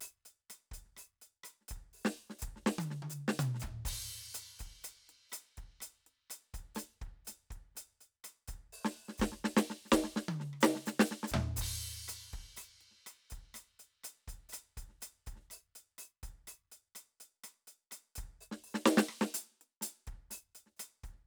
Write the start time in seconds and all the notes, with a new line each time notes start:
0.01 open hi-hat, cross-stick
0.26 closed hi-hat
0.50 closed hi-hat, cross-stick, snare
0.72 closed hi-hat, kick
0.85 snare
0.97 open hi-hat, cross-stick, snare
1.22 closed hi-hat
1.44 closed hi-hat, cross-stick
1.61 snare
1.69 closed hi-hat, kick
1.93 open hi-hat
2.05 snare
2.18 open hi-hat
2.30 snare
2.39 kick, closed hi-hat, hi-hat pedal
2.56 snare
2.67 snare
2.79 hi-hat pedal, high tom
2.91 snare
3.03 high tom
3.10 hi-hat pedal
3.28 snare
3.39 hi-hat pedal, mid tom
3.55 snare
3.60 kick, hi-hat pedal, floor tom
3.85 kick, hi-hat pedal, crash
3.91 kick
3.95 kick
4.35 closed hi-hat, cross-stick
4.59 closed hi-hat, kick
4.82 closed hi-hat, cross-stick, hi-hat pedal
5.09 closed hi-hat
5.30 closed hi-hat, cross-stick, hi-hat pedal
5.58 kick, closed hi-hat
5.80 closed hi-hat, cross-stick, snare
6.07 closed hi-hat
6.30 closed hi-hat, cross-stick
6.54 open hi-hat, kick
6.63 snare
6.75 closed hi-hat, snare, hi-hat pedal, percussion
7.02 kick, snare, closed hi-hat
7.25 closed hi-hat, snare, hi-hat pedal
7.51 kick, closed hi-hat
7.76 closed hi-hat, snare, hi-hat pedal
8.01 closed hi-hat
8.24 closed hi-hat, cross-stick, snare
8.48 closed hi-hat, kick
8.73 open hi-hat
8.85 snare
9.09 snare
9.18 kick, snare, hi-hat pedal
9.26 kick
9.29 kick, snare
9.45 snare
9.57 snare
9.70 snare
9.86 snare, hi-hat pedal
9.92 kick, snare
10.04 snare
10.16 snare
10.29 hi-hat pedal, high tom
10.40 snare
10.53 cross-stick
10.61 snare, hi-hat pedal
10.75 snare
10.86 snare, hi-hat pedal
11.00 snare
11.06 hi-hat pedal
11.11 snare
11.23 snare
11.28 hi-hat pedal
11.32 kick, floor tom
11.57 kick, hi-hat pedal
11.61 kick, crash
11.68 kick
12.08 closed hi-hat, cross-stick, snare
12.33 kick, closed hi-hat
12.57 open hi-hat, cross-stick
12.81 closed hi-hat
12.91 snare
13.06 closed hi-hat, cross-stick, snare
13.30 closed hi-hat, kick
13.54 closed hi-hat, cross-stick, snare, hi-hat pedal
13.80 closed hi-hat
14.04 closed hi-hat, cross-stick
14.28 closed hi-hat, kick
14.49 cross-stick, hi-hat pedal
14.54 closed hi-hat
14.77 closed hi-hat, kick
14.87 snare
14.89 snare
15.01 closed hi-hat, cross-stick, hi-hat pedal
15.27 closed hi-hat, kick
15.34 snare
15.36 snare
15.51 open hi-hat, cross-stick, hi-hat pedal
15.76 closed hi-hat
15.98 open hi-hat, cross-stick
16.23 closed hi-hat, kick
16.48 open hi-hat, cross-stick
16.72 closed hi-hat
16.95 closed hi-hat, cross-stick
17.20 closed hi-hat
17.44 closed hi-hat, cross-stick, snare
17.68 closed hi-hat
17.91 closed hi-hat, cross-stick, snare
18.16 open hi-hat, kick
18.41 open hi-hat, hi-hat pedal
18.52 snare
18.64 open hi-hat
18.75 snare
18.86 snare
18.98 snare
19.09 cross-stick
19.21 snare, hi-hat pedal
19.34 closed hi-hat
19.61 closed hi-hat
19.82 closed hi-hat, snare
20.07 kick, closed hi-hat
20.14 snare
20.31 open hi-hat, snare, hi-hat pedal
20.55 closed hi-hat
20.66 snare
20.77 closed hi-hat, cross-stick, snare, hi-hat pedal
21.04 open hi-hat, kick
21.13 snare